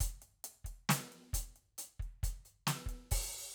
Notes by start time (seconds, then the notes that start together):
0.01 closed hi-hat, kick
0.22 closed hi-hat
0.45 closed hi-hat
0.65 kick, closed hi-hat
0.90 closed hi-hat, snare
1.12 closed hi-hat
1.34 closed hi-hat, kick
1.56 closed hi-hat
1.79 closed hi-hat
2.00 kick, closed hi-hat
2.24 closed hi-hat, kick
2.46 closed hi-hat
2.67 snare, closed hi-hat
2.87 kick, closed hi-hat
3.12 open hi-hat, kick